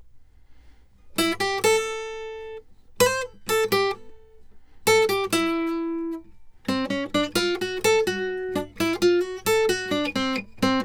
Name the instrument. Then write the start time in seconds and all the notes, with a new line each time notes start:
acoustic guitar
1.19 E4
1.41 G4
1.65 A4
3.01 B4
3.12 C5
3.50 A4
3.73 G4
4.88 A4
5.10 G4
5.33 E4
6.69 C4
6.91 C#4
7.15 D4
7.36 F4
7.62 F#4
7.85 A4
8.08 F#4
8.81 E4
9.03 F4
9.21 F#4
9.47 A4
9.70 F#4
9.92 D4
10.16 C4
10.63 C4